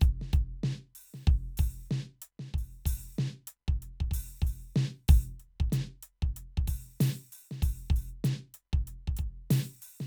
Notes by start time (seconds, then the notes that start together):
0.01 open hi-hat, kick, hi-hat pedal
0.21 snare
0.33 kick, closed hi-hat
0.64 snare
0.95 open hi-hat
1.14 snare
1.27 kick
1.57 open hi-hat, kick
1.85 hi-hat pedal
1.91 snare
2.22 closed hi-hat
2.39 snare
2.54 kick
2.58 open hi-hat
2.86 open hi-hat, kick
2.98 kick
3.15 snare, hi-hat pedal
3.47 closed hi-hat
3.68 kick
3.82 closed hi-hat
4.00 kick
4.11 open hi-hat, kick
4.42 kick
4.47 open hi-hat
4.76 snare
5.08 open hi-hat, kick
5.40 closed hi-hat
5.60 kick
5.72 closed hi-hat, snare
6.03 closed hi-hat
6.22 kick
6.36 closed hi-hat
6.57 kick
6.68 kick, open hi-hat
7.01 open hi-hat, snare
7.32 open hi-hat
7.51 snare
7.62 open hi-hat, kick
7.90 kick
7.96 open hi-hat
8.24 closed hi-hat, snare
8.54 closed hi-hat
8.73 kick
8.87 closed hi-hat
9.08 kick
9.17 closed hi-hat, kick
9.51 open hi-hat, snare
9.82 open hi-hat
9.90 open hi-hat
10.00 snare